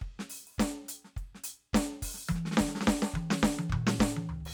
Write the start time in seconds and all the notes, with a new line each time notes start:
0.01 kick, snare, closed hi-hat
0.20 snare
0.30 open hi-hat
0.48 open hi-hat
0.55 kick, hi-hat pedal
0.60 closed hi-hat, snare
0.85 snare
0.89 closed hi-hat
1.05 snare
1.17 kick, closed hi-hat
1.35 snare
1.44 closed hi-hat
1.74 closed hi-hat, kick, snare
1.93 snare
2.03 open hi-hat, kick
2.15 snare
2.29 kick, hi-hat pedal, high tom
2.35 snare
2.46 snare
2.52 snare
2.58 kick, snare
2.69 snare
2.76 snare
2.82 snare
2.88 kick, snare
3.03 snare
3.14 kick, high tom
3.31 snare
3.43 kick, snare
3.59 high tom
3.70 kick, mid tom
3.88 snare
4.00 kick, snare
4.09 hi-hat pedal
4.17 high tom
4.30 floor tom
4.41 kick
4.46 crash